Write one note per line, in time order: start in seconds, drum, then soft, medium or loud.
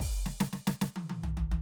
0.00 open hi-hat loud
0.00 kick medium
0.26 snare medium
0.40 snare loud
0.53 snare medium
0.67 snare loud
0.82 snare loud
0.96 high tom loud
1.10 high tom loud
1.24 floor tom loud
1.37 floor tom loud
1.52 floor tom loud